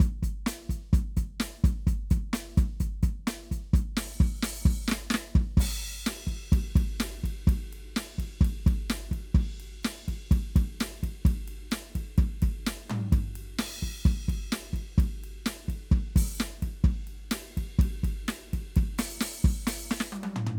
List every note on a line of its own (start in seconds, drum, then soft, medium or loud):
0.01 closed hi-hat medium
0.01 kick loud
0.24 closed hi-hat medium
0.24 kick medium
0.47 closed hi-hat medium
0.47 snare loud
0.70 closed hi-hat medium
0.70 kick medium
0.94 closed hi-hat medium
0.94 kick loud
1.17 closed hi-hat medium
1.17 kick medium
1.41 closed hi-hat medium
1.41 snare loud
1.65 closed hi-hat medium
1.65 kick loud
1.88 closed hi-hat medium
1.88 kick loud
2.11 closed hi-hat medium
2.11 kick loud
2.34 closed hi-hat medium
2.34 snare loud
2.58 closed hi-hat medium
2.58 kick loud
2.81 closed hi-hat medium
2.81 kick medium
3.04 closed hi-hat medium
3.04 kick loud
3.28 closed hi-hat medium
3.28 snare loud
3.52 closed hi-hat medium
3.52 kick medium
3.74 closed hi-hat medium
3.74 kick loud
3.98 open hi-hat loud
3.98 snare loud
4.06 snare soft
4.21 open hi-hat medium
4.21 kick loud
4.21 snare soft
4.43 open hi-hat loud
4.43 snare loud
4.66 open hi-hat medium
4.66 kick loud
4.88 snare loud
4.88 hi-hat pedal soft
4.92 snare loud
5.11 snare loud
5.15 snare loud
5.36 kick loud
5.58 open hi-hat loud
5.58 kick loud
5.58 crash loud
6.05 snare loud
6.05 hi-hat pedal soft
6.05 ride loud
6.28 kick medium
6.28 ride soft
6.50 kick loud
6.50 hi-hat pedal soft
6.50 ride medium
6.76 kick loud
6.76 ride medium
7.01 snare loud
7.01 ride loud
7.25 kick medium
7.25 ride medium
7.48 kick loud
7.48 ride medium
7.74 ride medium
7.97 snare loud
7.97 ride medium
8.19 kick medium
8.19 ride medium
8.24 cross-stick soft
8.42 kick loud
8.42 ride medium
8.67 kick loud
8.67 ride medium
8.91 snare loud
8.91 ride medium
9.12 kick medium
9.12 ride medium
9.35 kick loud
9.35 ride medium
9.61 ride medium
9.84 snare loud
9.84 ride medium
10.09 kick medium
10.09 ride medium
10.32 kick loud
10.32 ride medium
10.57 kick loud
10.57 ride medium
10.81 snare loud
10.81 ride loud
11.04 kick medium
11.04 ride medium
11.26 kick loud
11.26 ride medium
11.49 ride medium
11.72 snare loud
11.72 ride medium
11.96 kick medium
11.96 ride medium
12.19 kick loud
12.19 ride medium
12.43 kick loud
12.43 ride medium
12.67 snare loud
12.67 ride medium
12.91 floor tom loud
12.91 high tom loud
13.13 kick loud
13.13 ride medium
13.36 ride medium
13.59 snare loud
13.59 crash loud
13.83 kick medium
13.83 ride medium
14.06 kick loud
14.06 ride medium
14.29 kick medium
14.29 ride medium
14.53 snare loud
14.53 ride medium
14.74 kick medium
14.74 ride medium
14.99 kick loud
14.99 ride medium
15.25 ride medium
15.47 snare loud
15.47 ride medium
15.69 kick medium
15.69 ride medium
15.92 kick loud
15.92 ride soft
16.17 open hi-hat loud
16.17 kick loud
16.17 ride medium
16.40 snare loud
16.40 hi-hat pedal soft
16.63 kick medium
16.63 ride medium
16.85 kick loud
16.85 ride soft
17.08 ride medium
17.32 snare loud
17.32 ride loud
17.58 kick medium
17.58 ride medium
17.80 kick loud
17.80 ride medium
18.04 kick medium
18.04 ride medium
18.29 snare loud
18.29 ride medium
18.54 kick medium
18.54 ride medium
18.77 kick loud
18.77 ride medium
18.99 open hi-hat loud
18.99 snare loud
19.18 open hi-hat loud
19.18 kick soft
19.18 snare loud
19.45 kick loud
19.68 open hi-hat loud
19.68 snare loud
19.92 snare loud
20.01 snare loud
20.13 high tom loud
20.24 high tom loud
20.37 floor tom loud
20.47 floor tom loud
20.56 kick soft